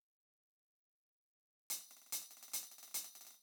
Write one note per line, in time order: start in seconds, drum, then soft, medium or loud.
1.70 closed hi-hat loud
1.81 closed hi-hat soft
1.91 closed hi-hat soft
1.97 closed hi-hat soft
2.02 closed hi-hat soft
2.06 closed hi-hat soft
2.10 closed hi-hat soft
2.12 closed hi-hat loud
2.22 closed hi-hat medium
2.31 closed hi-hat medium
2.37 closed hi-hat soft
2.41 closed hi-hat soft
2.43 closed hi-hat medium
2.48 closed hi-hat soft
2.52 closed hi-hat soft
2.53 closed hi-hat loud
2.63 closed hi-hat medium
2.71 closed hi-hat medium
2.78 closed hi-hat medium
2.83 closed hi-hat medium
2.88 closed hi-hat soft
2.91 closed hi-hat soft
2.94 closed hi-hat loud
3.04 closed hi-hat medium
3.15 closed hi-hat medium
3.21 closed hi-hat medium
3.25 closed hi-hat soft
3.27 closed hi-hat medium
3.31 closed hi-hat soft
3.34 closed hi-hat soft